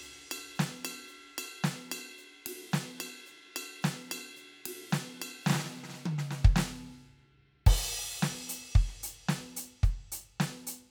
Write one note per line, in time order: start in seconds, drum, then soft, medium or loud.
0.04 hi-hat pedal soft
0.32 ride bell loud
0.56 hi-hat pedal soft
0.60 snare loud
0.86 ride bell loud
1.09 hi-hat pedal soft
1.39 ride bell loud
1.65 snare loud
1.65 hi-hat pedal soft
1.92 ride bell loud
2.19 hi-hat pedal medium
2.47 ride loud
2.72 snare loud
2.72 hi-hat pedal soft
3.01 ride bell loud
3.27 snare soft
3.27 hi-hat pedal medium
3.57 ride bell loud
3.83 snare loud
3.83 hi-hat pedal medium
4.12 ride bell loud
4.35 snare soft
4.35 hi-hat pedal medium
4.38 snare soft
4.66 ride loud
4.90 snare loud
4.90 hi-hat pedal soft
5.22 ride bell loud
5.44 snare loud
5.44 hi-hat pedal soft
5.50 snare loud
5.54 snare loud
5.55 snare medium
5.60 snare medium
5.65 snare medium
5.71 snare soft
5.75 snare soft
5.77 snare soft
5.80 snare soft
5.82 snare soft
5.84 snare medium
5.90 snare medium
5.99 snare soft
6.06 high tom loud
6.19 snare medium
6.31 snare medium
6.45 kick loud
6.57 snare loud
6.59 snare loud
7.67 kick loud
7.67 crash loud
7.96 closed hi-hat soft
8.23 snare loud
8.50 closed hi-hat loud
8.75 kick loud
8.75 closed hi-hat soft
8.89 snare soft
9.04 closed hi-hat loud
9.29 snare loud
9.57 closed hi-hat loud
9.84 closed hi-hat soft
9.84 kick loud
10.13 closed hi-hat loud
10.41 snare loud
10.68 closed hi-hat loud